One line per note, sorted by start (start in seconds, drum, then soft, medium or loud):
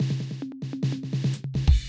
0.01 snare loud
0.10 snare loud
0.20 snare medium
0.31 snare medium
0.42 high tom loud
0.52 high tom medium
0.62 snare medium
0.73 high tom loud
0.83 snare loud
0.92 high tom loud
1.03 snare medium
1.13 snare loud
1.24 snare loud
1.34 closed hi-hat loud
1.44 floor tom loud
1.54 kick soft
1.54 snare loud
1.67 kick loud
1.67 crash loud